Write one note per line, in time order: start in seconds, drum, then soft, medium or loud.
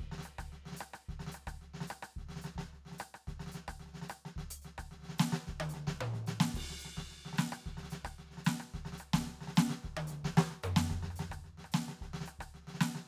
0.01 kick soft
0.01 snare soft
0.07 kick soft
0.12 snare soft
0.19 snare soft
0.24 cross-stick soft
0.24 hi-hat pedal soft
0.39 kick soft
0.39 cross-stick medium
0.45 kick soft
0.53 snare soft
0.63 snare soft
0.66 snare soft
0.73 snare soft
0.77 cross-stick medium
0.77 hi-hat pedal medium
0.95 cross-stick medium
1.10 kick soft
1.10 snare soft
1.17 kick soft
1.17 snare soft
1.28 snare soft
1.33 cross-stick medium
1.33 hi-hat pedal medium
1.48 kick soft
1.48 cross-stick medium
1.62 snare soft
1.68 snare soft
1.72 snare soft
1.75 snare soft
1.81 snare medium
1.88 cross-stick medium
1.88 hi-hat pedal soft
2.04 cross-stick medium
2.17 kick soft
2.17 snare soft
2.28 snare soft
2.30 snare soft
2.37 snare soft
2.42 snare soft
2.42 hi-hat pedal soft
2.57 kick soft
2.57 snare medium
2.74 snare soft
2.80 snare soft
2.83 snare soft
2.86 snare soft
2.92 snare soft
2.99 cross-stick medium
2.99 hi-hat pedal medium
3.15 cross-stick medium
3.28 kick soft
3.28 snare soft
3.35 kick soft
3.40 snare soft
3.47 snare soft
3.53 snare soft
3.53 hi-hat pedal soft
3.69 kick soft
3.69 cross-stick medium
3.81 snare soft
3.87 snare soft
3.94 snare soft
4.03 snare soft
4.10 cross-stick medium
4.10 hi-hat pedal soft
4.26 snare soft
4.37 kick soft
4.37 snare soft
4.43 kick soft
4.51 open hi-hat medium
4.62 snare soft
4.62 hi-hat pedal soft
4.79 kick soft
4.79 cross-stick medium
4.92 snare soft
4.99 snare soft
5.03 snare soft
5.10 snare soft
5.16 snare soft
5.16 hi-hat pedal medium
5.20 snare loud
5.33 snare medium
5.48 kick soft
5.48 snare soft
5.56 kick soft
5.61 high tom loud
5.70 hi-hat pedal medium
5.75 snare soft
5.88 kick soft
5.88 snare medium
6.02 mid tom loud
6.15 snare soft
6.27 snare medium
6.27 hi-hat pedal soft
6.41 snare loud
6.55 kick soft
6.55 crash medium
6.67 kick soft
6.67 snare soft
6.80 hi-hat pedal medium
6.86 snare soft
6.98 kick soft
6.98 snare soft
7.12 snare soft
7.18 snare soft
7.23 snare soft
7.26 snare soft
7.34 snare soft
7.39 snare medium
7.39 hi-hat pedal medium
7.53 cross-stick medium
7.67 kick soft
7.67 snare soft
7.74 kick soft
7.74 snare soft
7.84 snare soft
7.91 snare medium
7.91 hi-hat pedal soft
8.05 kick soft
8.05 cross-stick medium
8.19 snare soft
8.26 snare soft
8.31 snare soft
8.38 snare soft
8.45 snare loud
8.45 hi-hat pedal medium
8.61 cross-stick medium
8.75 kick soft
8.75 snare soft
8.86 snare soft
8.93 snare soft
8.99 cross-stick medium
8.99 hi-hat pedal medium
9.14 kick soft
9.14 snare loud
9.20 snare soft
9.27 snare soft
9.34 snare soft
9.40 snare soft
9.48 snare medium
9.56 snare loud
9.56 hi-hat pedal soft
9.71 snare medium
9.84 kick soft
9.84 snare soft
9.92 kick soft
9.98 high tom medium
10.08 snare soft
10.08 hi-hat pedal medium
10.25 kick soft
10.25 snare medium
10.38 snare loud
10.51 snare soft
10.64 hi-hat pedal soft
10.64 floor tom loud
10.77 snare loud
10.91 kick soft
10.91 snare soft
10.98 kick soft
11.04 snare soft
11.11 cross-stick soft
11.17 snare medium
11.17 hi-hat pedal medium
11.31 kick soft
11.31 cross-stick medium
11.45 snare soft
11.51 snare soft
11.57 snare soft
11.65 cross-stick soft
11.73 snare medium
11.73 hi-hat pedal medium
11.89 snare soft
12.02 kick soft
12.02 snare soft
12.14 snare medium
12.21 snare medium
12.27 cross-stick medium
12.27 hi-hat pedal soft
12.40 kick soft
12.40 cross-stick medium
12.55 snare soft
12.63 snare soft
12.68 snare soft
12.75 snare soft
12.81 snare loud
12.81 hi-hat pedal soft
12.96 snare soft